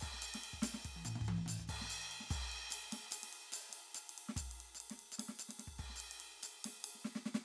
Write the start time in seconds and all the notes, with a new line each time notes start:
0.01 kick, percussion, ride
0.14 snare
0.23 ride, percussion
0.35 snare, ride
0.42 ride, percussion
0.54 kick
0.63 snare, ride, percussion
0.74 snare
0.83 kick, ride, percussion
0.97 high tom
1.06 floor tom, percussion
1.16 floor tom
1.22 kick, percussion
1.29 high tom
1.39 floor tom
1.47 floor tom, percussion
1.60 kick
1.69 kick, percussion, ride
1.82 snare
1.91 ride, percussion
2.02 ride
2.11 ride, percussion
2.21 snare
2.31 kick, percussion, ride
2.50 ride, percussion
2.71 ride, percussion
2.93 snare, ride
3.12 ride, percussion
3.23 snare, ride
3.33 ride
3.53 ride, percussion
3.70 snare, ride
3.95 ride, percussion
4.10 ride
4.19 ride
4.29 snare
4.37 kick, ride, percussion
4.52 ride
4.61 ride
4.76 percussion
4.81 ride
4.91 snare, ride
5.00 ride
5.13 percussion
5.19 snare, ride
5.29 snare
5.40 ride, percussion
5.49 snare, ride
5.59 snare, ride
5.68 kick
5.79 kick, ride
5.90 snare
5.97 percussion
6.01 ride
6.12 ride
6.21 ride
6.44 ride, percussion
6.65 snare, ride
6.85 ride
6.95 snare
7.05 snare
7.16 snare
7.26 snare
7.35 snare